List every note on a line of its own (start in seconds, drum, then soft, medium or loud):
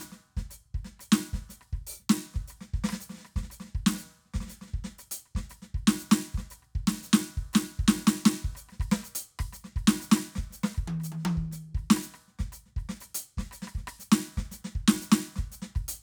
0.01 cross-stick soft
0.01 snare soft
0.01 hi-hat pedal medium
0.13 snare soft
0.38 kick soft
0.38 snare soft
0.51 cross-stick soft
0.51 closed hi-hat soft
0.51 hi-hat pedal medium
0.75 kick soft
0.75 cross-stick soft
0.86 snare soft
0.97 snare soft
1.00 cross-stick soft
1.00 snare soft
1.00 hi-hat pedal medium
1.13 snare loud
1.34 kick soft
1.34 snare soft
1.41 snare soft
1.50 snare soft
1.50 closed hi-hat soft
1.50 hi-hat pedal medium
1.62 cross-stick soft
1.74 kick soft
1.74 cross-stick soft
1.88 open hi-hat medium
1.93 hi-hat pedal soft
2.00 snare soft
2.10 snare loud
2.15 cross-stick soft
2.26 snare soft
2.35 kick soft
2.35 snare soft
2.41 snare soft
2.48 cross-stick soft
2.48 hi-hat pedal medium
2.53 closed hi-hat soft
2.62 snare soft
2.74 kick soft
2.74 snare soft
2.85 snare medium
2.90 cross-stick medium
2.90 snare medium
3.01 cross-stick soft
3.01 hi-hat pedal medium
3.10 snare soft
3.14 snare soft
3.17 snare soft
3.19 snare soft
3.25 cross-stick soft
3.25 snare soft
3.37 kick soft
3.37 snare soft
3.43 snare soft
3.51 cross-stick soft
3.51 snare soft
3.51 hi-hat pedal medium
3.61 snare soft
3.65 snare soft
3.76 kick soft
3.76 cross-stick soft
3.87 snare loud
3.95 snare soft
3.97 snare soft
3.97 hi-hat pedal medium
4.19 snare soft
4.26 snare soft
4.35 kick soft
4.35 snare soft
4.41 snare soft
4.47 snare soft
4.49 snare soft
4.49 closed hi-hat soft
4.49 hi-hat pedal medium
4.62 snare soft
4.66 snare soft
4.74 kick soft
4.85 snare soft
4.99 cross-stick soft
4.99 snare soft
4.99 hi-hat pedal medium
5.12 closed hi-hat loud
5.27 cross-stick soft
5.36 kick soft
5.36 snare soft
5.50 cross-stick soft
5.50 snare soft
5.50 hi-hat pedal medium
5.63 snare soft
5.75 kick soft
5.75 cross-stick soft
5.88 snare loud
5.99 snare soft
5.99 hi-hat pedal medium
6.01 snare soft
6.12 snare loud
6.35 kick soft
6.35 snare soft
6.51 cross-stick soft
6.51 hi-hat pedal medium
6.63 cross-stick soft
6.76 kick soft
6.76 snare soft
6.88 snare loud
7.00 snare soft
7.00 hi-hat pedal medium
7.14 snare loud
7.38 kick soft
7.54 cross-stick soft
7.54 cross-stick medium
7.54 snare loud
7.54 hi-hat pedal medium
7.62 cross-stick soft
7.78 kick soft
7.78 cross-stick soft
7.89 snare loud
7.99 snare soft
8.08 snare loud
8.08 hi-hat pedal medium
8.18 snare soft
8.26 snare loud
8.45 kick soft
8.56 cross-stick soft
8.56 hi-hat pedal medium
8.70 cross-stick soft
8.70 snare soft
8.81 kick soft
8.81 cross-stick soft
8.81 snare soft
8.92 snare loud
9.02 cross-stick soft
9.02 snare soft
9.02 hi-hat pedal medium
9.16 closed hi-hat loud
9.40 kick soft
9.40 cross-stick medium
9.53 cross-stick soft
9.53 snare soft
9.53 hi-hat pedal medium
9.65 snare soft
9.77 kick soft
9.77 cross-stick soft
9.88 snare loud
10.00 cross-stick soft
10.00 snare soft
10.00 hi-hat pedal medium
10.12 snare loud
10.18 cross-stick medium
10.25 snare soft
10.36 kick soft
10.36 snare soft
10.50 snare soft
10.50 hi-hat pedal medium
10.50 open hi-hat soft
10.64 snare medium
10.75 kick soft
10.75 cross-stick soft
10.75 snare soft
10.88 high tom loud
11.01 cross-stick soft
11.01 hi-hat pedal medium
11.13 high tom medium
11.18 snare soft
11.26 high tom loud
11.38 kick soft
11.53 snare soft
11.53 hi-hat pedal medium
11.75 kick soft
11.75 cross-stick soft
11.91 snare loud
11.97 cross-stick medium
12.03 snare soft
12.03 hi-hat pedal medium
12.15 cross-stick soft
12.28 snare soft
12.40 kick soft
12.40 snare soft
12.53 cross-stick soft
12.53 closed hi-hat soft
12.53 hi-hat pedal medium
12.67 snare soft
12.77 kick soft
12.77 cross-stick soft
12.90 snare medium
13.01 cross-stick soft
13.01 snare soft
13.01 closed hi-hat soft
13.01 hi-hat pedal medium
13.15 closed hi-hat loud
13.38 kick soft
13.38 snare soft
13.50 cross-stick soft
13.50 snare soft
13.50 hi-hat pedal medium
13.63 snare soft
13.68 cross-stick medium
13.76 kick soft
13.76 snare soft
13.88 cross-stick medium
14.00 snare soft
14.00 hi-hat pedal medium
14.13 snare loud
14.26 snare soft
14.38 kick soft
14.38 snare soft
14.52 snare soft
14.52 closed hi-hat soft
14.52 hi-hat pedal medium
14.65 snare soft
14.76 kick soft
14.76 snare soft
14.89 snare loud
15.02 snare soft
15.02 hi-hat pedal medium
15.13 snare loud
15.26 cross-stick soft
15.37 kick soft
15.37 snare soft
15.51 snare soft
15.51 hi-hat pedal medium
15.63 snare soft
15.76 kick soft
15.76 cross-stick soft
15.89 closed hi-hat loud